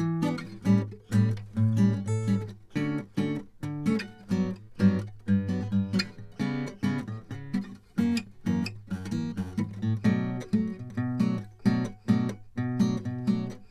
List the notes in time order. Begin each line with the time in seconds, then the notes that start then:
0.00 E3
0.23 B3 D4 G4
0.66 A2 G3 C#4 E4
1.13 A2 G3 C#4 E4
1.58 A2
1.78 G3 C#4 E4
2.07 A2 A4
2.29 G3 C#4
2.77 D3 A3 C#4 F#4
3.18 D3 A3 C#4 F#4
3.64 D3
3.87 A3 C#4 F#4
4.31 G2 F#3 B3 D4
4.81 G2 F#3 B3 D4
5.29 G2
5.49 F#3 B3 D4
5.73 G2
5.95 F#3 B3 D4
6.41 C#3 G3 B3 E4
6.84 C#3 G3 B3 E4
7.09 A2
7.32 C#3
7.55 G3 B3 E4
7.99 F#2 E3 A#3 C#4
8.47 F#2 E3 A#3 C#4
8.92 F#2
9.13 E3 A#3 C#4
9.39 F#2
9.59 E3 A3 C#4
9.84 A2
10.05 B2 F#3 A3 D4
10.43 B2
10.54 F#3 A3 D4
10.81 B2
10.98 B2
11.21 F#3 A3 D4
11.67 B2 F#3 A3 D4
12.09 B2 F#3 A3 D4
12.59 B2
12.81 F#3 A3 D4
13.06 B2
13.29 F#3 A3 D4